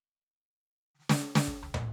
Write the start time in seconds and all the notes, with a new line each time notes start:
0.95 snare
0.99 snare
1.01 snare
1.09 snare
1.35 snare
1.47 kick
1.63 floor tom
1.74 high tom